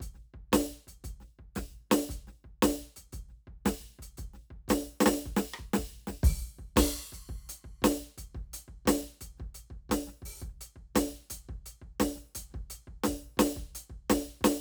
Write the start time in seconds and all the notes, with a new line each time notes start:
0.01 closed hi-hat, kick
0.15 snare
0.34 kick
0.53 closed hi-hat, kick, snare
0.88 closed hi-hat, kick
1.05 closed hi-hat, kick
1.21 snare
1.39 kick
1.56 closed hi-hat, kick, snare
1.91 closed hi-hat, kick, snare
2.06 kick, snare
2.11 closed hi-hat, snare
2.28 snare
2.45 kick
2.63 closed hi-hat, kick, snare
2.77 snare
2.97 closed hi-hat, kick
3.13 closed hi-hat, kick
3.30 snare
3.48 kick
3.66 closed hi-hat, kick, snare
3.81 snare
3.99 closed hi-hat, kick
4.18 closed hi-hat, kick
4.34 snare
4.51 kick
4.69 closed hi-hat, kick, snare
5.01 snare
5.06 kick, snare
5.26 kick
5.37 snare
5.54 cross-stick
5.60 kick
5.74 kick, snare
6.08 kick, snare
6.24 open hi-hat, kick
6.59 kick
6.77 kick, snare, hi-hat pedal, crash
7.13 closed hi-hat, kick
7.30 kick
7.47 closed hi-hat, snare
7.65 kick
7.83 closed hi-hat, kick, snare
7.98 snare
8.18 closed hi-hat, kick
8.35 kick, snare
8.54 closed hi-hat
8.69 kick
8.86 closed hi-hat, kick, snare
9.02 snare
9.21 closed hi-hat, kick
9.38 kick, snare
9.55 closed hi-hat
9.71 kick
9.90 closed hi-hat, kick, snare
10.08 snare
10.23 open hi-hat, kick
10.40 kick, hi-hat pedal
10.49 snare
10.61 closed hi-hat
10.76 kick
10.96 closed hi-hat, kick, snare
11.10 snare
11.31 closed hi-hat, kick
11.49 kick
11.66 closed hi-hat
11.82 kick
12.00 closed hi-hat, kick, snare
12.16 snare
12.36 closed hi-hat, kick
12.51 kick, snare
12.56 snare
12.71 closed hi-hat
12.88 kick
13.04 closed hi-hat, kick, snare
13.38 closed hi-hat, kick, snare
13.57 kick
13.76 closed hi-hat
13.90 kick
14.10 closed hi-hat, kick, snare
14.42 closed hi-hat, kick, snare